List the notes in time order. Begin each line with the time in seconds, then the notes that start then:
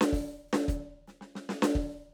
0.00 snare
0.13 open hi-hat, kick
0.48 hi-hat pedal
0.53 snare
0.68 open hi-hat, kick
1.07 snare, hi-hat pedal
1.21 snare
1.35 snare
1.49 snare
1.62 snare
1.75 kick